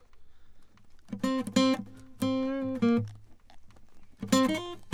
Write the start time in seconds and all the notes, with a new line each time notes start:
1.24 C4
1.57 C4
1.75 B3
2.23 C4
2.83 A#3
4.33 C4
4.49 D#4
4.59 F4